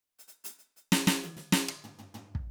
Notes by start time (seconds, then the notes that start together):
0.19 closed hi-hat
0.28 closed hi-hat
0.44 closed hi-hat
0.58 closed hi-hat
0.76 closed hi-hat
0.92 snare
1.07 snare
1.24 high tom
1.37 snare
1.52 snare
1.69 high tom
1.84 floor tom
1.99 floor tom
2.14 floor tom
2.35 kick